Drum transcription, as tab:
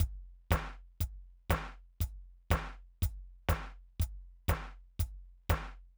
HH |o-x-x-x-|x-x-x-x-|x-x-x-x-|
SD |--o---o-|--o---o-|--o---o-|
BD |o-o-o-o-|o-o-o-o-|o-o-o-o-|